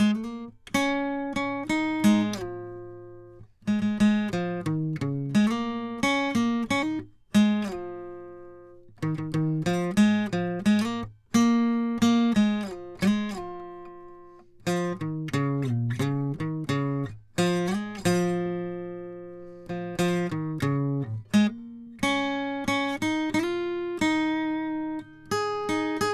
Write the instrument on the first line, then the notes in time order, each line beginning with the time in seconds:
acoustic guitar
0.00 G#3
0.16 A3
0.25 A#3
0.75 C#4
1.37 C#4
1.70 D#4
2.04 G#3
2.34 F3
3.68 G#3
3.83 G#3
4.01 G#3
4.34 F3
4.66 D#3
5.02 C#3
5.35 G#3
5.47 A#3
6.03 C#4
6.35 A#3
6.71 C#4
6.83 D#4
7.35 G#3
7.66 F3
9.03 D#3
9.19 D#3
9.34 D#3
9.66 F3
9.97 G#3
10.33 F3
10.66 G#3
10.82 A#3
11.35 A#3
12.02 A#3
12.37 G#3
12.64 F3
13.03 G#3
13.32 F3
14.67 F3
15.01 D#3
15.34 C#3
15.64 A#2
16.00 C#3
16.41 D#3
16.69 C#3
17.38 F3
17.68 G#3
18.06 F3
19.70 F3
19.99 F3
20.32 D#3
20.63 C#3
21.03 A2
21.34 G#3
21.45 A#3
22.00 G#3 C#4
22.68 C#4
23.02 D#4
23.35 D#4
23.44 F4
24.02 D#4
25.32 G#4
25.69 D#4
26.01 G#4